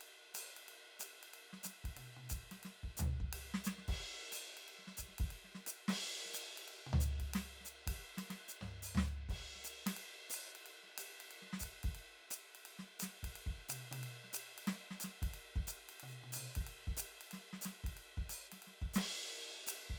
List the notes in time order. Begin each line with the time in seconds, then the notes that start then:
0.01 ride
0.34 hi-hat pedal, ride
0.54 hi-hat pedal, ride
0.68 ride
1.00 hi-hat pedal, ride
1.23 ride
1.34 ride
1.53 snare
1.63 snare, hi-hat pedal, ride
1.84 kick, ride
1.97 high tom, ride
2.04 hi-hat pedal
2.17 high tom
2.29 kick, hi-hat pedal, ride
2.51 snare, ride
2.63 snare, ride
2.83 kick
2.97 floor tom, hi-hat pedal, high tom
3.20 kick
3.33 ride
3.54 snare
3.64 snare, hi-hat pedal
3.78 snare
3.88 kick, ride
4.32 hi-hat pedal, ride
4.57 ride
4.68 ride
4.79 snare
4.87 snare
4.97 kick, hi-hat pedal, ride
5.08 snare
5.18 kick, ride
5.31 ride
5.44 snare
5.55 snare
5.67 hi-hat pedal, ride
5.88 snare, ride
6.25 snare
6.34 hi-hat pedal, ride
6.58 ride
6.68 ride
6.75 hi-hat pedal
6.87 high tom
6.93 floor tom
7.00 hi-hat pedal
7.19 kick, ride
7.34 snare, ride
7.41 hi-hat pedal
7.61 snare
7.65 hi-hat pedal
7.87 kick, ride
8.18 snare, ride
8.30 snare, ride
8.48 hi-hat pedal
8.61 snare, floor tom
8.82 hi-hat pedal
8.95 snare, floor tom
9.05 hi-hat pedal
9.17 snare
9.29 kick, ride
9.55 snare
9.64 hi-hat pedal, ride
9.86 snare, ride
9.97 ride
10.30 hi-hat pedal
10.34 ride
10.55 ride
10.66 ride
10.83 snare
10.98 hi-hat pedal, ride
11.20 ride
11.31 ride
11.42 snare
11.53 snare
11.60 kick, hi-hat pedal, ride
11.83 kick, ride
11.95 ride
12.31 hi-hat pedal, ride
12.55 ride
12.65 ride
12.79 snare
13.00 snare, hi-hat pedal, ride
13.23 kick, ride
13.36 ride
13.46 kick
13.69 hi-hat pedal, high tom, ride
13.92 high tom, ride
14.03 ride
14.24 snare
14.33 hi-hat pedal, ride
14.58 ride
14.67 snare, ride
14.91 snare
15.00 snare, hi-hat pedal, ride
15.22 kick, ride
15.34 ride
15.56 kick
15.67 hi-hat pedal, ride
15.89 hi-hat pedal, ride
16.00 high tom, ride
16.08 hi-hat pedal
16.24 high tom
16.32 hi-hat pedal, high tom, ride
16.55 kick, ride
16.67 ride
16.87 kick
16.97 hi-hat pedal, ride
17.21 ride
17.31 snare, ride
17.53 snare
17.61 hi-hat pedal, ride
17.65 snare
17.84 kick, ride
17.97 ride
18.17 kick
18.30 hi-hat pedal, ride
18.52 snare, ride
18.62 ride
18.67 snare
18.82 kick
18.94 snare, hi-hat pedal, ride
19.67 hi-hat pedal, ride
19.90 kick